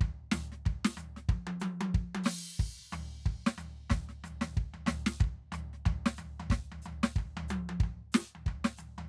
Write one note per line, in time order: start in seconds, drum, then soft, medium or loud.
0.01 kick medium
0.01 floor tom medium
0.32 snare medium
0.32 floor tom medium
0.32 hi-hat pedal medium
0.52 snare soft
0.66 kick medium
0.66 floor tom medium
0.85 snare loud
0.97 floor tom medium
0.97 hi-hat pedal medium
1.17 snare soft
1.29 kick medium
1.29 high tom medium
1.47 high tom loud
1.60 hi-hat pedal medium
1.60 high tom loud
1.81 high tom loud
1.95 kick medium
2.15 high tom loud
2.24 snare loud
2.24 hi-hat pedal medium
2.24 crash loud
2.60 kick medium
2.60 floor tom soft
2.92 cross-stick medium
2.92 floor tom medium
2.92 hi-hat pedal medium
3.26 kick medium
3.26 floor tom soft
3.47 snare loud
3.58 floor tom medium
3.58 hi-hat pedal medium
3.90 kick medium
3.90 snare medium
3.90 floor tom medium
4.09 snare soft
4.24 floor tom medium
4.24 hi-hat pedal medium
4.41 snare medium
4.41 floor tom medium
4.57 kick medium
4.74 floor tom medium
4.87 snare loud
4.87 floor tom medium
4.87 hi-hat pedal medium
5.07 snare medium
5.20 kick loud
5.20 floor tom medium
5.52 cross-stick medium
5.52 floor tom medium
5.52 hi-hat pedal medium
5.74 snare soft
5.86 kick medium
5.86 floor tom medium
6.06 snare loud
6.17 floor tom medium
6.17 hi-hat pedal medium
6.40 floor tom medium
6.50 kick medium
6.50 snare medium
6.72 floor tom medium
6.82 floor tom medium
6.82 hi-hat pedal medium
7.04 snare loud
7.16 kick medium
7.16 floor tom medium
7.37 floor tom medium
7.49 hi-hat pedal medium
7.49 high tom loud
7.69 high tom medium
7.80 kick medium
7.80 floor tom soft
8.12 snare loud
8.12 hi-hat pedal medium
8.35 floor tom soft
8.46 kick medium
8.46 floor tom medium
8.65 snare loud
8.78 kick soft
8.78 floor tom soft
8.78 hi-hat pedal medium
8.98 floor tom medium